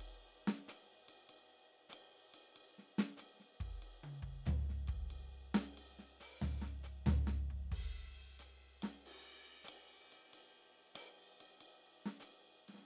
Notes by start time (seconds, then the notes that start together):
0.01 ride
0.48 snare
0.69 hi-hat pedal, ride
1.09 ride
1.30 ride
1.90 hi-hat pedal, ride
2.34 ride
2.56 ride
2.79 snare
2.99 snare
3.18 hi-hat pedal, ride
3.40 snare
3.61 kick, ride
3.83 ride
4.04 high tom
4.23 kick
4.46 floor tom, hi-hat pedal
4.70 snare
4.88 kick, ride
5.11 ride
5.55 snare, ride
5.78 ride
5.99 snare
6.21 hi-hat pedal
6.42 snare, floor tom
6.62 snare
6.84 hi-hat pedal
7.07 snare, floor tom
7.28 snare
7.51 kick
7.72 kick, crash
8.40 hi-hat pedal, ride
8.83 snare, ride
9.06 ride
9.65 hi-hat pedal
9.69 ride
10.13 ride
10.34 ride
10.95 hi-hat pedal, ride
11.41 ride
11.61 ride
12.06 snare
12.20 hi-hat pedal, ride
12.69 snare, ride
12.75 snare
12.78 snare
12.82 snare